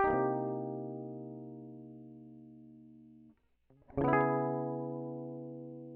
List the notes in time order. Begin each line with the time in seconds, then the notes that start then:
0.00 G4
0.05 A#3 D#4
0.12 C3 E3
0.32 E4
3.99 C#3 E3
4.05 B3 E4
4.13 G#4